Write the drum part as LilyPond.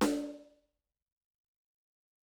\new DrumStaff \drummode { \time 4/4 \tempo 4 = 108 <sn hh>4 r4 r4 r4 | }